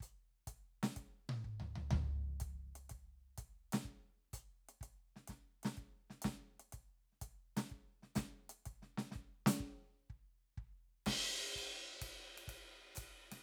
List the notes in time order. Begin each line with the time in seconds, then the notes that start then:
0.01 closed hi-hat, kick
0.48 kick, closed hi-hat
0.83 snare, closed hi-hat
0.97 kick, closed hi-hat
1.30 high tom
1.45 kick
1.60 floor tom
1.76 floor tom
1.91 kick, floor tom
2.41 kick, closed hi-hat
2.76 closed hi-hat
2.90 kick, closed hi-hat
3.38 kick, closed hi-hat
3.73 snare, closed hi-hat
3.85 kick
4.34 closed hi-hat, kick
4.69 closed hi-hat
4.82 kick, closed hi-hat
5.17 snare
5.28 kick, snare, closed hi-hat
5.64 snare, closed hi-hat
5.78 kick, closed hi-hat
6.11 snare
6.23 kick, snare, closed hi-hat
6.60 closed hi-hat
6.73 kick, closed hi-hat
7.13 snare
7.22 kick, closed hi-hat
7.57 snare, closed hi-hat
7.70 kick, closed hi-hat
8.03 snare
8.16 closed hi-hat, kick, snare
8.50 closed hi-hat
8.66 kick, closed hi-hat
8.83 snare
8.98 snare
9.12 snare
9.16 kick
9.47 open hi-hat, snare
9.61 kick
10.11 kick
10.58 kick
11.07 kick, snare, ride
11.56 kick, ride
12.02 kick, hi-hat pedal, ride
12.37 snare, ride
12.48 kick, ride
12.96 kick, hi-hat pedal, ride
13.32 snare, ride